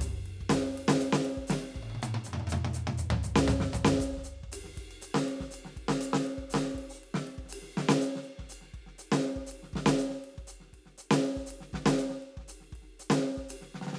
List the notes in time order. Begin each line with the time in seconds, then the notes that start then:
0.01 kick, hi-hat pedal, ride
0.07 kick
0.22 hi-hat pedal
0.26 ride
0.41 kick
0.50 snare, hi-hat pedal, ride
0.55 snare
0.72 hi-hat pedal
0.78 ride
0.89 snare
1.00 hi-hat pedal, ride
1.13 snare
1.26 ride
1.38 kick
1.46 kick, hi-hat pedal
1.50 snare, ride
1.75 kick, high tom
1.82 kick, high tom
1.91 high tom
1.96 high tom
2.03 hi-hat pedal, high tom
2.15 high tom
2.25 hi-hat pedal, mid tom
2.34 mid tom
2.40 mid tom
2.48 hi-hat pedal, mid tom
2.53 mid tom
2.65 mid tom
2.74 hi-hat pedal, mid tom
2.88 mid tom
2.98 floor tom, hi-hat pedal
3.11 floor tom
3.24 floor tom, hi-hat pedal
3.36 snare
3.48 kick, hi-hat pedal, floor tom
3.61 snare
3.73 kick, hi-hat pedal, floor tom
3.85 snare
3.93 snare
4.00 kick, hi-hat pedal, ride bell
4.13 kick
4.17 snare
4.24 snare, hi-hat pedal, ride
4.44 kick
4.52 hi-hat pedal, ride
4.64 snare
4.69 snare
4.73 snare, hi-hat pedal
4.78 kick, ride
4.91 ride bell
5.02 hi-hat pedal, ride
5.15 snare
5.24 hi-hat pedal
5.29 ride
5.41 kick, snare
5.51 hi-hat pedal, ride bell
5.65 snare
5.73 hi-hat pedal
5.77 kick, ride
5.89 snare
6.01 hi-hat pedal, ride bell
6.14 snare
6.22 hi-hat pedal
6.27 ride
6.38 kick
6.51 hi-hat pedal, ride
6.55 snare
6.63 snare
6.72 kick, hi-hat pedal
6.79 ride
6.90 open hi-hat
7.04 ride
7.15 snare
7.28 ride
7.38 kick
7.46 snare, hi-hat pedal
7.53 ride
7.62 snare
7.71 hi-hat pedal
7.78 snare
7.89 snare
8.02 hi-hat pedal
8.16 snare
8.23 hi-hat pedal, ride
8.39 kick, snare
8.43 snare
8.50 hi-hat pedal, ride bell
8.62 snare
8.67 snare
8.74 kick, ride
8.87 snare
8.99 hi-hat pedal, ride
9.12 snare
9.18 cross-stick
9.24 ride
9.36 kick, snare
9.47 hi-hat pedal
9.52 ride
9.63 snare
9.74 kick, snare
9.87 snare
9.99 hi-hat pedal, ride bell
10.10 snare
10.18 snare
10.25 ride
10.35 kick, snare
10.40 snare
10.48 hi-hat pedal, ride bell
10.61 snare
10.66 snare
10.73 kick, ride
10.86 snare
10.98 hi-hat pedal, ride
11.11 snare
11.16 cross-stick
11.21 hi-hat pedal
11.26 ride
11.36 kick, snare
11.47 hi-hat pedal
11.51 ride
11.61 snare
11.74 kick, snare
11.86 snare
11.93 snare
11.99 hi-hat pedal, ride bell
12.10 snare
12.23 ride
12.38 kick, snare
12.49 hi-hat pedal, ride
12.61 snare
12.73 kick, ride
12.83 snare
13.00 hi-hat pedal, ride
13.11 snare
13.18 snare
13.37 kick, snare
13.49 hi-hat pedal, ride
13.62 snare
13.75 snare
13.82 snare
13.87 snare
13.94 snare